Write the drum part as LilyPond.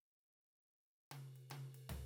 \new DrumStaff \drummode { \time 4/4 \tempo 4 = 110 r4 r4 <tommh cymr>8 cymr16 <cymr tommh>16 r16 cymr16 <tomfh cymr>8 | }